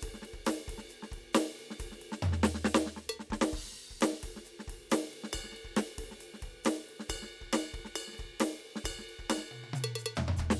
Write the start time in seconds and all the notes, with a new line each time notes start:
0.01 kick, hi-hat pedal, ride
0.10 kick
0.14 snare
0.22 snare, ride
0.34 kick
0.39 kick
0.45 snare, hi-hat pedal, ride
0.68 kick, ride
0.75 kick, snare
0.89 hi-hat pedal, ride
1.03 snare
1.12 kick, ride
1.18 kick
1.33 snare, hi-hat pedal, ride
1.59 ride
1.71 snare
1.79 kick, hi-hat pedal, ride
1.87 kick
1.92 snare
2.02 ride
2.12 snare
2.22 floor tom, hi-hat pedal
2.33 snare
2.44 snare
2.55 snare
2.65 snare, hi-hat pedal
2.75 snare
2.86 snare
2.97 snare
3.07 kick, hi-hat pedal, percussion
3.20 snare
3.30 kick, snare
3.36 kick
3.42 snare
3.51 kick, hi-hat pedal, crash
3.60 kick
3.64 kick, snare
3.72 snare
3.91 kick
4.01 snare, hi-hat pedal, ride
4.12 snare
4.23 kick, ride
4.30 kick
4.36 snare
4.45 hi-hat pedal, ride
4.59 snare
4.68 kick, ride
4.74 kick
4.90 snare, hi-hat pedal, ride
5.13 ride
5.24 snare
5.33 kick, hi-hat pedal, ride bell
5.41 kick, snare
5.52 snare
5.57 ride
5.65 kick
5.77 snare, hi-hat pedal, ride
5.98 kick, ride
6.04 kick
6.11 snare
6.20 hi-hat pedal, ride
6.34 snare
6.42 kick, ride
6.49 kick
6.64 snare, hi-hat pedal, ride
6.89 ride
7.00 snare
7.09 kick, hi-hat pedal, ride bell
7.16 kick
7.23 snare
7.33 ride
7.42 kick
7.47 kick
7.53 snare, hi-hat pedal, ride bell
7.74 kick, ride
7.80 kick
7.85 snare
7.96 hi-hat pedal, ride bell
8.08 snare
8.13 snare
8.18 kick, ride
8.28 kick
8.40 snare, hi-hat pedal, ride
8.65 ride
8.76 snare
8.85 kick, hi-hat pedal, ride bell
8.91 kick
8.99 snare
9.09 ride
9.19 kick
9.30 snare, hi-hat pedal, ride bell
9.38 snare
9.51 mid tom
9.64 mid tom
9.74 hi-hat pedal, mid tom
9.84 percussion
9.96 hi-hat pedal, percussion
10.06 percussion
10.16 hi-hat pedal, floor tom
10.28 floor tom
10.37 kick, hi-hat pedal, floor tom
10.51 snare